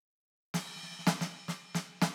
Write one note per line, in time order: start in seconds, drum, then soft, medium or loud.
0.54 snare loud
0.54 ride loud
0.76 snare soft
0.83 snare soft
0.88 snare soft
0.91 snare soft
0.99 snare soft
1.05 snare soft
1.07 snare loud
1.21 snare loud
1.49 snare medium
1.75 snare loud
2.02 snare loud